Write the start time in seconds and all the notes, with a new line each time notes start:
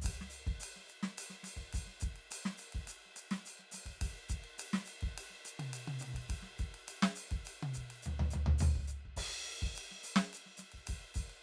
0.01 kick, snare, hi-hat pedal
0.06 ride
0.21 snare
0.30 hi-hat pedal
0.37 ride
0.47 kick, ride
0.60 hi-hat pedal, ride
0.76 snare
0.89 hi-hat pedal, ride
1.03 snare, ride
1.18 hi-hat pedal, ride
1.30 snare
1.44 snare, hi-hat pedal, ride
1.57 kick, ride
1.73 kick, hi-hat pedal, ride
1.87 snare
2.00 kick, hi-hat pedal, ride
2.16 ride
2.31 hi-hat pedal, ride
2.46 snare
2.58 hi-hat pedal, ride
2.73 kick, ride
2.88 hi-hat pedal, ride
3.06 snare
3.16 hi-hat pedal, ride
3.31 snare, ride
3.46 hi-hat pedal, ride bell
3.60 snare
3.72 snare, hi-hat pedal, ride
3.86 kick, ride
4.01 kick, hi-hat pedal, ride
4.29 kick, hi-hat pedal, ride
4.44 ride
4.59 hi-hat pedal, ride
4.74 snare
4.85 hi-hat pedal, ride
5.01 kick, ride
5.18 hi-hat pedal, ride
5.31 snare
5.45 hi-hat pedal, ride
5.60 high tom, ride
5.74 hi-hat pedal, ride
5.88 high tom
5.99 hi-hat pedal, high tom, ride
6.14 kick, ride
6.29 kick, hi-hat pedal, ride
6.43 snare
6.59 kick, hi-hat pedal, ride
6.75 ride
6.88 hi-hat pedal, ride
7.03 snare
7.15 hi-hat pedal, ride
7.31 kick, ride
7.45 hi-hat pedal, ride
7.63 high tom
7.74 kick, hi-hat pedal, ride
7.91 ride
8.03 floor tom, hi-hat pedal
8.20 floor tom
8.31 floor tom, hi-hat pedal
8.47 floor tom
8.59 floor tom, hi-hat pedal
8.76 kick
8.88 hi-hat pedal
9.06 kick
9.17 kick, hi-hat pedal, crash, ride
9.44 hi-hat pedal
9.49 ride
9.62 kick
9.75 hi-hat pedal, ride
9.92 snare
10.04 hi-hat pedal, ride
10.16 snare, ride
10.33 hi-hat pedal, ride
10.46 snare
10.57 snare, hi-hat pedal, ride
10.72 kick, ride
10.87 kick, hi-hat pedal, ride
11.15 kick, hi-hat pedal, ride
11.30 ride